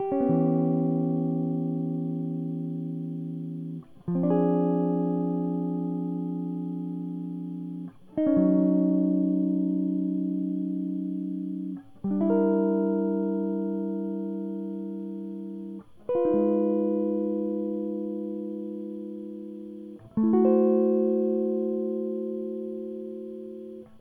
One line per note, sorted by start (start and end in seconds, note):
0.00 3.71 G4
0.12 3.79 C#4
0.21 3.17 B3
0.30 3.84 E3
4.09 7.91 F3
4.16 7.61 C4
4.24 7.89 D4
4.31 7.59 G#4
8.18 11.76 D#4
8.27 11.82 C#4
8.38 11.79 F#3
12.05 15.85 G3
12.11 15.82 D4
12.21 15.81 E4
12.30 15.82 A#4
16.09 20.00 B4
16.15 19.99 F4
16.25 20.00 D#4
16.35 19.97 G#3
20.18 23.85 A3
20.24 23.85 E4
20.34 23.85 F#4
20.45 23.86 C5